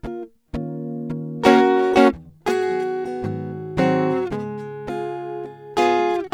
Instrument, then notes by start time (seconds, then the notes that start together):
acoustic guitar
0.01 D3 A#3
0.07 F4
0.55 D#3 A#3 C#4 F4
1.11 D#3 A#3 C#4
1.45 A#3 C#4 F#4 A#4
1.94 F#4 A#4
1.98 A#3 C#4
2.47 B3 F#4 G#4
2.70 D#3 F#3 B3
3.06 B3 F#4
3.25 G#2 D#3 F#3
3.79 D#3 F#3 C4 F#4 G#4
4.32 C#3 G#3 B3
4.89 C4 F4 G#4
5.45 C4
5.78 B3 F4 G#4